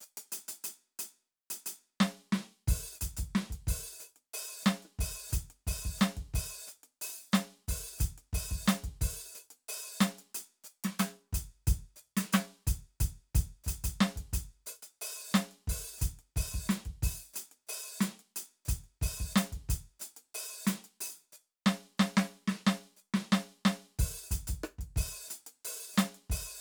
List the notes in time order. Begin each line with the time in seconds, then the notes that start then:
0.01 hi-hat pedal
0.18 closed hi-hat
0.32 closed hi-hat
0.49 closed hi-hat
0.64 closed hi-hat
0.99 closed hi-hat
1.51 closed hi-hat
1.66 closed hi-hat
2.01 snare
2.33 snare
2.68 open hi-hat, kick
2.95 hi-hat pedal
3.01 closed hi-hat, kick
3.17 closed hi-hat, kick
3.36 snare
3.50 kick, closed hi-hat
3.67 open hi-hat, kick
4.00 open hi-hat, hi-hat pedal
4.16 closed hi-hat
4.34 open hi-hat
4.63 closed hi-hat, snare, hi-hat pedal
4.83 cross-stick, closed hi-hat
4.99 open hi-hat, kick
5.30 closed hi-hat, kick, hi-hat pedal
5.51 closed hi-hat
5.67 open hi-hat, kick
5.85 kick
5.98 closed hi-hat, snare, hi-hat pedal
6.17 kick, closed hi-hat
6.34 open hi-hat, kick
6.67 closed hi-hat, hi-hat pedal
6.84 closed hi-hat
7.02 open hi-hat
7.33 closed hi-hat, snare, hi-hat pedal
7.68 open hi-hat, kick, hi-hat pedal
7.98 closed hi-hat, kick, hi-hat pedal
8.18 closed hi-hat
8.33 open hi-hat, kick
8.51 kick
8.66 closed hi-hat, snare, hi-hat pedal
8.84 kick, closed hi-hat
9.01 open hi-hat, kick
9.35 open hi-hat, hi-hat pedal
9.51 closed hi-hat
9.69 open hi-hat
10.00 closed hi-hat, snare, hi-hat pedal
10.19 closed hi-hat
10.35 open hi-hat
10.64 hi-hat pedal
10.84 snare, closed hi-hat
11.00 closed hi-hat, snare
11.33 closed hi-hat, kick
11.67 closed hi-hat, kick
11.96 hi-hat pedal
12.17 closed hi-hat, snare
12.33 closed hi-hat, snare
12.67 closed hi-hat, kick
13.01 closed hi-hat, kick
13.35 open hi-hat, kick
13.64 kick, hi-hat pedal
13.68 closed hi-hat
13.84 closed hi-hat, kick
14.01 snare
14.16 kick, closed hi-hat
14.33 open hi-hat, kick
14.67 open hi-hat, hi-hat pedal
14.83 closed hi-hat
15.02 open hi-hat
15.32 closed hi-hat, snare, hi-hat pedal
15.52 closed hi-hat
15.68 open hi-hat, kick
15.98 closed hi-hat, kick, hi-hat pedal
16.19 closed hi-hat
16.36 open hi-hat, kick
16.54 kick
16.67 closed hi-hat, snare, hi-hat pedal
16.86 kick, closed hi-hat
17.03 open hi-hat, kick
17.34 closed hi-hat, hi-hat pedal
17.52 closed hi-hat
17.67 open hi-hat, hi-hat pedal
17.99 closed hi-hat, snare, hi-hat pedal
18.20 closed hi-hat
18.36 open hi-hat
18.66 closed hi-hat, kick, hi-hat pedal
18.84 closed hi-hat
19.02 open hi-hat, kick
19.20 kick, open hi-hat
19.32 snare, hi-hat pedal
19.38 closed hi-hat
19.53 kick, closed hi-hat
19.69 open hi-hat, kick
20.00 closed hi-hat, hi-hat pedal
20.17 closed hi-hat
20.35 open hi-hat
20.65 closed hi-hat, snare, hi-hat pedal
20.85 closed hi-hat
21.01 open hi-hat
21.33 hi-hat pedal
21.67 snare
21.98 snare, hi-hat pedal
22.17 snare
22.48 snare
22.67 snare
22.97 hi-hat pedal
23.14 snare
23.33 snare
23.66 snare
23.99 open hi-hat, kick
24.28 kick, hi-hat pedal
24.32 closed hi-hat
24.48 closed hi-hat, kick
24.64 cross-stick
24.79 kick, closed hi-hat
24.96 open hi-hat, kick
25.28 closed hi-hat, hi-hat pedal
25.47 closed hi-hat
25.65 open hi-hat
25.94 hi-hat pedal
25.98 closed hi-hat, snare
26.15 closed hi-hat
26.30 open hi-hat, kick